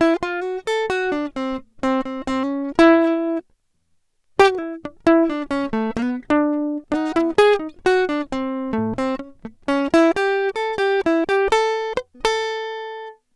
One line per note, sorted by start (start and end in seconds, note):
0.02 0.19 E4
0.24 0.41 F4
0.41 0.64 F#4
0.68 0.95 A4
0.91 1.21 F#4
1.13 1.32 D4
1.37 1.67 C4
1.84 2.04 C4
2.07 2.24 C4
2.28 2.44 C4
2.44 2.75 C#4
2.80 3.45 E4
4.40 4.50 G4
4.50 4.59 F#4
4.60 4.82 E4
5.08 5.41 E4
5.31 5.47 D4
5.52 5.74 C#4
5.74 5.94 A3
5.98 6.23 B3
6.31 6.87 D4
6.93 7.13 D#4
7.17 7.36 E4
7.39 7.64 G#4
7.61 7.75 D#4
7.87 8.11 F#4
8.10 8.29 D4
8.33 8.80 C4
8.74 8.97 A3
8.99 9.19 C4
9.21 9.40 C#4
9.46 9.58 A3
9.69 9.91 C#4
9.95 10.14 E4
10.18 10.54 G4
10.57 10.82 A4
10.79 11.04 G4
11.07 11.27 E4
11.30 11.52 G4
11.53 11.96 A4
12.26 13.23 A4